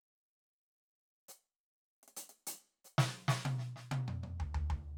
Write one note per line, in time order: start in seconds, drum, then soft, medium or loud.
1.28 hi-hat pedal loud
2.03 closed hi-hat soft
2.08 closed hi-hat soft
2.16 closed hi-hat loud
2.29 closed hi-hat medium
2.47 open hi-hat loud
2.84 hi-hat pedal medium
2.98 snare loud
3.28 snare loud
3.45 high tom loud
3.58 snare soft
3.76 snare soft
3.91 high tom loud
4.08 mid tom medium
4.23 mid tom medium
4.40 floor tom medium
4.54 floor tom loud
4.70 floor tom loud